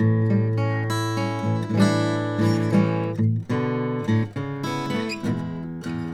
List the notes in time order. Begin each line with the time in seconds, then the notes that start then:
0.00 A2 E3
0.30 G3
0.58 C#4
0.90 E4
1.17 C#4
1.40 A2
1.46 E3
1.70 A2
1.75 E3 G3
1.80 D4 E4
2.39 A2 E3
2.73 E3 G3 C#4
3.05 B3
3.19 A2
3.50 B2 D3
4.01 A2
4.06 D3
4.37 C#3 D3
4.64 B3 E4
4.91 B3
4.95 A3
5.24 E2
5.29 G#3
5.85 E2